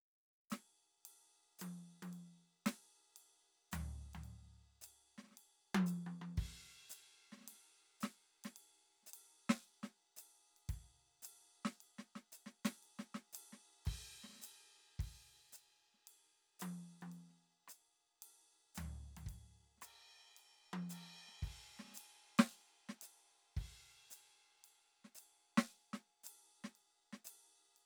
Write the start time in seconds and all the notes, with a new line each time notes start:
0.50 snare, hi-hat pedal, ride
1.05 ride
1.59 hi-hat pedal, high tom, ride
2.02 high tom, ride
2.13 ride
2.66 snare, hi-hat pedal, ride
3.16 ride
3.72 floor tom, hi-hat pedal, ride
4.14 floor tom, ride
4.81 hi-hat pedal, ride
5.18 snare
5.23 snare
5.27 snare
5.31 snare
5.37 ride
5.75 high tom
5.86 hi-hat pedal, ride
6.06 high tom
6.21 high tom
6.37 kick, crash
6.90 hi-hat pedal, ride
7.32 snare
7.37 snare
7.41 snare
7.44 snare
7.46 snare, ride
7.52 snare
8.00 snare, hi-hat pedal, ride
8.44 snare, ride
8.56 ride
9.03 snare, hi-hat pedal
9.14 ride
9.49 snare, ride
9.64 ride
9.83 snare
10.16 hi-hat pedal, ride
10.56 ride
10.69 kick, ride
11.22 hi-hat pedal, ride
11.65 snare
11.80 ride
11.98 snare
12.15 snare
12.32 hi-hat pedal, ride
12.46 snare
12.65 snare, ride
12.83 ride
12.99 snare
13.14 snare
13.33 hi-hat pedal, ride
13.52 snare
13.85 kick, crash
14.24 snare
14.29 snare
14.32 snare
14.36 snare
14.42 snare, hi-hat pedal, ride
14.99 kick, ride, crash
15.52 hi-hat pedal, ride
15.94 snare
16.07 ride
16.59 hi-hat pedal, high tom, ride
17.01 high tom, ride
17.12 ride
17.29 snare
17.68 cross-stick, hi-hat pedal, ride
18.22 ride
18.75 floor tom, hi-hat pedal, ride
19.17 floor tom, ride
19.26 kick, ride
19.77 snare, hi-hat pedal
19.82 cross-stick, ride
20.36 ride
20.73 high tom
20.90 hi-hat pedal, ride
21.28 snare
21.42 kick, crash
21.79 snare
21.84 snare
21.87 snare
21.91 snare
21.94 snare, hi-hat pedal, ride
22.38 snare, ride
22.49 ride
22.89 snare
23.01 hi-hat pedal, ride
23.57 kick, crash
24.10 hi-hat pedal, ride
24.64 ride
25.04 snare
25.15 hi-hat pedal, ride
25.57 snare, ride
25.93 snare
26.24 hi-hat pedal, ride
26.64 snare
26.75 ride
27.13 snare
27.25 hi-hat pedal, ride
27.76 ride